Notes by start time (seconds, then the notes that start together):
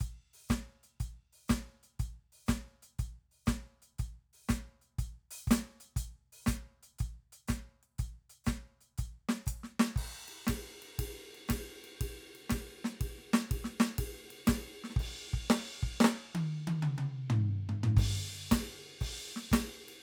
0.01 closed hi-hat, kick
0.34 open hi-hat
0.50 closed hi-hat, kick, snare, hi-hat pedal
0.84 closed hi-hat
1.01 closed hi-hat, kick
1.33 open hi-hat
1.49 closed hi-hat, kick, snare, hi-hat pedal
1.84 closed hi-hat
2.00 closed hi-hat, kick
2.33 open hi-hat
2.47 closed hi-hat, kick, snare, hi-hat pedal
2.83 closed hi-hat
2.99 closed hi-hat, kick
3.32 open hi-hat
3.47 closed hi-hat, kick, snare, hi-hat pedal
3.83 closed hi-hat
3.99 closed hi-hat, kick
4.34 open hi-hat
4.49 open hi-hat, kick, snare, hi-hat pedal
4.82 closed hi-hat
4.99 closed hi-hat, kick
5.31 open hi-hat
5.48 closed hi-hat, kick, snare, hi-hat pedal
5.81 closed hi-hat
5.97 closed hi-hat, kick
6.33 open hi-hat
6.47 open hi-hat, kick, snare, hi-hat pedal
6.83 closed hi-hat
6.99 closed hi-hat, kick
7.33 open hi-hat
7.48 open hi-hat, kick, snare, hi-hat pedal
7.84 closed hi-hat
7.99 closed hi-hat, kick
8.30 closed hi-hat
8.45 closed hi-hat, kick, snare, hi-hat pedal
8.81 closed hi-hat
8.98 closed hi-hat, kick
9.29 snare
9.47 kick, closed hi-hat, hi-hat pedal
9.64 snare
9.80 snare
9.97 kick, crash
10.29 ride
10.46 kick, snare, hi-hat pedal, ride
10.83 ride
10.99 kick, ride
11.35 ride
11.49 kick, snare, hi-hat pedal, ride
11.85 ride
12.01 kick, ride
12.36 ride
12.50 kick, snare, hi-hat pedal, ride
12.85 snare
13.01 kick, ride
13.19 snare
13.34 snare
13.52 kick, ride
13.65 snare
13.81 snare
13.99 kick, ride
14.31 ride
14.46 kick, snare, hi-hat pedal, ride
14.85 snare
14.90 snare
14.97 kick, snare, ride
15.34 kick
15.51 snare, ride
15.83 kick
16.01 snare
16.05 snare
16.36 high tom
16.68 high tom
16.83 mid tom
16.99 mid tom
17.31 floor tom
17.70 floor tom
17.84 floor tom
17.98 kick, floor tom, ride
18.51 kick, snare, hi-hat pedal, ride
18.86 ride
19.02 kick, ride
19.37 snare
19.52 kick, snare, hi-hat pedal, ride
19.89 ride